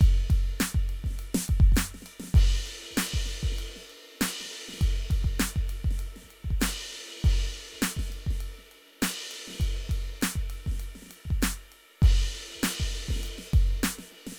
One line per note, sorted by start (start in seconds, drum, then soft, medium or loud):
0.01 kick loud
0.01 hi-hat pedal medium
0.01 ride loud
0.30 kick loud
0.30 ride loud
0.59 snare loud
0.59 hi-hat pedal medium
0.59 ride loud
0.75 kick medium
0.88 hi-hat pedal soft
0.88 ride medium
1.04 kick medium
1.04 snare soft
1.11 snare soft
1.14 snare soft
1.19 hi-hat pedal medium
1.19 ride loud
1.35 snare loud
1.44 hi-hat pedal soft
1.48 kick medium
1.48 ride loud
1.60 kick loud
1.72 kick medium
1.72 hi-hat pedal medium
1.72 ride loud
1.77 snare loud
1.94 snare soft
2.02 snare soft
2.02 ride bell medium
2.20 snare medium
2.24 snare soft
2.28 snare soft
2.35 kick loud
2.35 hi-hat pedal soft
2.35 ride loud
2.66 ride loud
2.91 kick soft
2.97 snare loud
2.97 hi-hat pedal medium
2.97 ride loud
3.14 kick medium
3.26 snare soft
3.26 hi-hat pedal soft
3.26 ride medium
3.43 kick medium
3.52 snare soft
3.57 hi-hat pedal soft
3.57 ride loud
3.76 snare soft
3.90 ride medium
4.20 snare loud
4.20 hi-hat pedal soft
4.20 ride loud
4.41 snare soft
4.45 snare soft
4.50 ride medium
4.69 snare soft
4.73 snare soft
4.78 kick medium
4.78 snare soft
4.78 hi-hat pedal soft
4.78 ride loud
5.11 kick medium
5.11 ride loud
5.25 kick medium
5.39 snare loud
5.39 hi-hat pedal medium
5.39 ride loud
5.56 kick medium
5.68 hi-hat pedal medium
5.68 ride loud
5.85 kick medium
5.91 snare soft
5.96 hi-hat pedal soft
5.96 ride loud
6.16 snare soft
6.22 kick soft
6.22 snare soft
6.26 snare soft
6.26 hi-hat pedal soft
6.31 ride medium
6.45 kick medium
6.51 kick medium
6.60 snare loud
6.60 hi-hat pedal medium
6.60 ride loud
7.24 kick loud
7.24 ride loud
7.73 kick soft
7.82 snare loud
7.82 hi-hat pedal medium
7.82 ride loud
7.97 kick medium
7.97 snare soft
8.09 snare soft
8.09 hi-hat pedal soft
8.09 ride loud
8.27 kick medium
8.31 snare soft
8.41 ride loud
8.58 snare soft
8.71 ride medium
9.00 snare loud
9.00 hi-hat pedal soft
9.00 ride loud
9.31 ride loud
9.47 snare soft
9.50 snare soft
9.54 snare soft
9.59 kick medium
9.59 hi-hat pedal soft
9.59 ride loud
9.89 kick medium
9.89 ride loud
10.21 snare loud
10.21 hi-hat pedal medium
10.21 ride loud
10.36 kick medium
10.50 hi-hat pedal soft
10.50 ride loud
10.67 kick medium
10.67 snare soft
10.72 snare soft
10.75 snare soft
10.78 snare soft
10.78 hi-hat pedal medium
10.78 ride loud
10.95 snare soft
11.02 snare soft
11.06 snare soft
11.10 snare soft
11.10 hi-hat pedal medium
11.10 ride loud
11.26 kick soft
11.31 kick medium
11.31 ride soft
11.41 snare loud
11.41 hi-hat pedal medium
11.41 ride loud
11.72 ride medium
12.02 kick loud
12.02 ride loud
12.55 kick soft
12.63 snare loud
12.63 hi-hat pedal medium
12.63 ride loud
12.80 kick medium
12.85 snare soft
12.91 snare soft
12.91 ride medium
13.09 kick medium
13.09 snare soft
13.16 snare soft
13.19 snare soft
13.23 snare soft
13.23 hi-hat pedal medium
13.23 ride loud
13.38 snare soft
13.54 kick loud
13.54 ride loud
13.83 snare loud
13.83 hi-hat pedal medium
13.83 ride loud
13.99 snare soft
14.08 snare soft
14.12 snare soft
14.12 ride medium
14.27 snare medium
14.32 snare soft